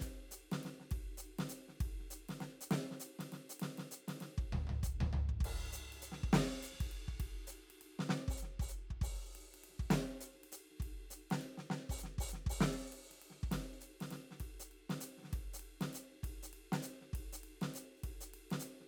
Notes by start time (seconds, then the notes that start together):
0.01 kick, hi-hat pedal, ride
0.31 hi-hat pedal, ride
0.52 snare, ride
0.63 snare, ride
0.80 snare
0.91 kick, ride
1.17 hi-hat pedal, ride
1.39 snare, ride
1.49 hi-hat pedal, ride
1.68 snare
1.80 kick, ride
1.99 snare
2.10 hi-hat pedal, ride
2.29 snare, ride
2.40 snare, ride
2.61 hi-hat pedal
2.71 snare, ride
2.91 snare
3.00 hi-hat pedal, ride
3.19 snare, ride
3.32 snare, ride
3.49 hi-hat pedal
3.60 snare, ride
3.78 snare, ride
3.91 hi-hat pedal
4.08 snare, ride
4.20 snare, ride
4.38 kick
4.52 floor tom, high tom
4.67 floor tom, high tom
4.83 kick, hi-hat pedal
5.00 floor tom, high tom
5.13 floor tom, high tom
5.29 kick
5.40 kick
5.44 ride, crash
5.73 hi-hat pedal, ride
5.92 ride
6.02 hi-hat pedal, ride
6.12 snare
6.23 kick
6.33 snare, crash
6.63 hi-hat pedal, ride
6.73 snare
6.80 kick, ride
6.91 ride
7.04 kick, snare
7.20 kick, ride
7.47 hi-hat pedal, ride
7.70 ride
7.81 ride
7.99 snare
8.09 snare
8.28 open hi-hat, kick
8.37 hi-hat pedal
8.43 snare
8.59 open hi-hat, kick
8.69 hi-hat pedal
8.74 snare
8.90 kick
9.01 open hi-hat, kick
9.35 ride
9.54 ride
9.64 ride
9.69 snare
9.79 kick
9.90 snare, hi-hat pedal, ride
10.21 hi-hat pedal, ride
10.33 snare
10.44 ride
10.52 hi-hat pedal, ride
10.70 snare
10.77 kick, snare
10.80 snare, ride
11.00 snare
11.10 hi-hat pedal, ride
11.30 snare, ride
11.41 ride
11.58 snare
11.70 snare
11.89 open hi-hat, kick
11.98 hi-hat pedal
12.04 snare
12.18 open hi-hat, kick
12.29 hi-hat pedal
12.33 snare
12.46 open hi-hat, kick
12.61 snare
12.92 ride
13.10 snare, ride
13.22 ride
13.30 snare
13.43 kick
13.51 snare, ride
13.81 hi-hat pedal, ride
14.00 snare, ride
14.11 snare, ride
14.31 snare
14.40 kick, ride
14.60 hi-hat pedal
14.71 ride
14.89 snare, ride
15.01 hi-hat pedal, ride
15.17 snare
15.21 snare
15.24 snare
15.29 kick, snare, ride
15.54 hi-hat pedal
15.59 ride
15.81 snare, ride
15.93 hi-hat pedal, ride
16.12 snare
16.23 kick, ride
16.43 hi-hat pedal
16.53 ride
16.72 snare, ride
16.82 hi-hat pedal, ride
17.01 snare
17.13 kick, ride
17.33 hi-hat pedal
17.43 ride
17.61 snare, ride
17.74 hi-hat pedal, ride
17.97 hi-hat pedal
18.03 kick, ride
18.21 hi-hat pedal
18.34 ride
18.51 snare, ride
18.60 hi-hat pedal, ride
18.80 snare